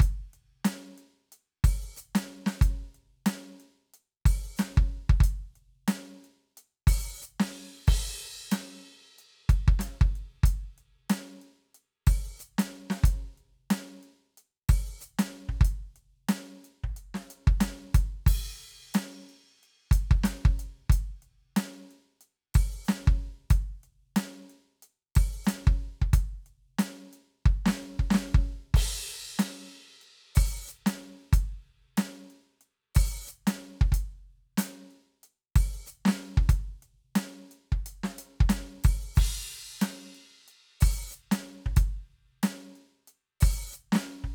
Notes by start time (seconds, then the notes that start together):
0.01 kick, closed hi-hat
0.34 closed hi-hat
0.65 snare, closed hi-hat
0.99 closed hi-hat
1.33 closed hi-hat
1.65 kick, open hi-hat
1.97 hi-hat pedal
2.16 snare, closed hi-hat
2.47 snare
2.62 kick, closed hi-hat
2.95 closed hi-hat
3.27 snare, closed hi-hat
3.61 closed hi-hat
3.95 closed hi-hat
4.26 kick, open hi-hat
4.58 snare, closed hi-hat, hi-hat pedal
4.78 kick
5.10 kick
5.21 kick, closed hi-hat
5.56 closed hi-hat
5.89 snare, closed hi-hat
6.25 closed hi-hat
6.58 closed hi-hat
6.88 open hi-hat, kick
7.23 hi-hat pedal
7.41 snare, crash
7.88 kick, crash
8.52 snare, closed hi-hat
9.19 closed hi-hat
9.50 kick, closed hi-hat
9.69 kick
9.80 snare, closed hi-hat
10.02 kick
10.16 closed hi-hat
10.44 kick, closed hi-hat
10.79 closed hi-hat
11.10 snare, closed hi-hat
11.42 closed hi-hat
11.75 closed hi-hat
12.08 kick, open hi-hat
12.40 hi-hat pedal
12.59 snare, closed hi-hat
12.91 snare
13.04 kick, closed hi-hat
13.38 closed hi-hat
13.71 snare, closed hi-hat
14.04 closed hi-hat
14.38 closed hi-hat
14.70 kick, open hi-hat
15.02 hi-hat pedal
15.20 snare, closed hi-hat
15.50 kick
15.62 kick, closed hi-hat
15.97 closed hi-hat
16.29 snare, closed hi-hat
16.65 closed hi-hat
16.85 kick
16.97 closed hi-hat
17.15 snare
17.31 closed hi-hat
17.48 kick
17.61 snare, closed hi-hat
17.95 kick, closed hi-hat
18.27 kick, crash
18.95 snare, closed hi-hat
19.30 closed hi-hat
19.64 closed hi-hat
19.92 kick, closed hi-hat
20.12 kick
20.24 snare, closed hi-hat
20.46 kick
20.60 closed hi-hat
20.90 kick, closed hi-hat
21.23 closed hi-hat
21.57 snare, closed hi-hat
21.92 closed hi-hat
22.22 closed hi-hat
22.55 kick, open hi-hat
22.86 snare, hi-hat pedal
22.90 closed hi-hat
23.08 kick
23.51 kick, closed hi-hat
23.84 closed hi-hat
24.17 snare, closed hi-hat
24.51 closed hi-hat
24.83 closed hi-hat
25.16 kick, open hi-hat
25.45 snare, hi-hat pedal
25.49 closed hi-hat
25.68 kick
26.02 kick
26.14 kick, closed hi-hat
26.47 closed hi-hat
26.79 snare, closed hi-hat
27.14 closed hi-hat
27.46 kick
27.67 snare
27.69 snare
28.00 kick
28.11 snare
28.15 snare
28.35 kick
28.75 kick, crash
29.40 snare, closed hi-hat
29.72 closed hi-hat
30.02 closed hi-hat
30.36 open hi-hat, kick
30.69 hi-hat pedal
30.87 snare, closed hi-hat
31.34 kick, closed hi-hat
31.98 snare, closed hi-hat
32.31 closed hi-hat
32.62 closed hi-hat
32.96 open hi-hat, kick
33.28 hi-hat pedal
33.48 snare, closed hi-hat
33.82 kick
33.93 kick, closed hi-hat
34.58 closed hi-hat, snare
34.92 closed hi-hat
35.24 closed hi-hat
35.57 kick, open hi-hat
35.87 hi-hat pedal
36.06 snare
36.09 snare
36.38 kick
36.50 kick, closed hi-hat
36.83 closed hi-hat
37.16 snare, closed hi-hat
37.52 closed hi-hat
37.73 kick
37.87 closed hi-hat
38.04 snare
38.19 closed hi-hat
38.41 kick
38.50 snare, closed hi-hat
38.85 kick, open hi-hat
39.16 kick, hi-hat pedal, crash
39.50 closed hi-hat
39.82 snare, closed hi-hat
40.15 closed hi-hat
40.49 closed hi-hat
40.81 open hi-hat, kick
41.12 hi-hat pedal
41.32 snare, closed hi-hat
41.67 kick
41.77 kick, closed hi-hat
42.44 snare, closed hi-hat
42.76 closed hi-hat
43.08 closed hi-hat
43.41 open hi-hat, kick
43.73 hi-hat pedal
43.93 snare
43.96 snare
44.25 kick